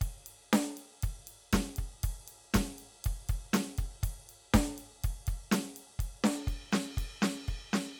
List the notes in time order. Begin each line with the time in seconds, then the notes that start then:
0.01 kick, ride
0.26 ride
0.53 snare, ride
0.77 ride
1.03 kick, ride
1.27 ride
1.53 kick, snare, ride
1.76 kick, ride
2.03 kick, ride
2.28 ride
2.54 kick, snare, ride
2.78 ride
3.04 kick, ride
3.29 kick, ride
3.53 snare, ride
3.78 kick, ride
4.03 kick, ride
4.29 ride
4.54 kick, snare, ride
4.78 ride
5.04 kick, ride
5.27 kick, ride
5.52 snare, ride
5.76 ride
5.99 kick, ride
6.24 snare, ride
6.47 kick, ride
6.72 snare, ride
6.97 kick, ride
7.22 snare, ride
7.48 kick, ride
7.73 snare, ride